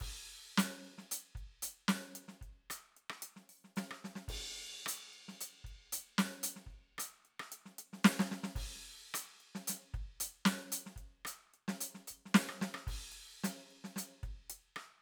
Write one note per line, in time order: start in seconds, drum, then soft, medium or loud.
0.01 kick soft
0.01 crash medium
0.29 closed hi-hat soft
0.58 closed hi-hat medium
0.58 snare loud
0.85 closed hi-hat soft
0.99 snare soft
1.12 closed hi-hat loud
1.36 kick soft
1.36 closed hi-hat soft
1.63 closed hi-hat loud
1.89 snare medium
1.89 closed hi-hat soft
2.16 closed hi-hat medium
2.29 snare soft
2.42 kick soft
2.42 closed hi-hat soft
2.71 closed hi-hat medium
2.71 cross-stick medium
2.97 closed hi-hat soft
3.10 cross-stick medium
3.23 closed hi-hat medium
3.37 snare soft
3.50 open hi-hat soft
3.65 snare soft
3.77 snare medium
3.77 hi-hat pedal medium
3.92 cross-stick medium
4.05 snare soft
4.16 snare soft
4.29 kick soft
4.29 ride medium
4.87 closed hi-hat loud
4.87 cross-stick medium
5.14 closed hi-hat soft
5.29 snare soft
5.41 closed hi-hat medium
5.65 kick soft
5.65 closed hi-hat soft
5.93 closed hi-hat loud
6.19 snare medium
6.44 closed hi-hat loud
6.57 snare soft
6.67 kick soft
6.67 closed hi-hat soft
6.99 closed hi-hat medium
6.99 cross-stick medium
7.26 closed hi-hat soft
7.40 cross-stick medium
7.53 closed hi-hat medium
7.66 snare soft
7.79 closed hi-hat medium
7.94 snare soft
8.04 snare loud
8.04 hi-hat pedal soft
8.20 snare medium
8.32 snare medium
8.44 snare medium
8.56 kick soft
8.56 crash medium
8.76 snare soft
9.15 closed hi-hat loud
9.15 cross-stick medium
9.41 closed hi-hat soft
9.56 snare soft
9.68 closed hi-hat loud
9.68 snare soft
9.94 kick soft
9.94 closed hi-hat soft
10.21 closed hi-hat loud
10.46 snare loud
10.73 closed hi-hat loud
10.87 snare soft
10.97 kick soft
10.97 closed hi-hat soft
11.26 closed hi-hat medium
11.26 cross-stick medium
11.54 closed hi-hat soft
11.69 snare medium
11.81 closed hi-hat loud
11.95 snare soft
12.08 closed hi-hat medium
12.08 kick soft
12.26 snare soft
12.35 snare loud
12.50 cross-stick medium
12.62 snare medium
12.75 cross-stick medium
12.87 kick soft
12.87 crash medium
13.12 closed hi-hat soft
13.44 closed hi-hat medium
13.44 snare medium
13.71 closed hi-hat soft
13.85 snare soft
13.97 closed hi-hat medium
13.97 snare medium
14.24 kick soft
14.24 closed hi-hat soft
14.40 snare soft
14.50 closed hi-hat loud
14.77 cross-stick medium